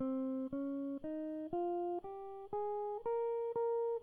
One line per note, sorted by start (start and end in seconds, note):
0.00 0.49 C4
0.53 1.00 C#4
1.04 1.49 D#4
1.53 2.02 F4
2.04 2.48 G4
2.53 3.03 G#4
3.06 3.54 A#4
3.56 3.99 A#4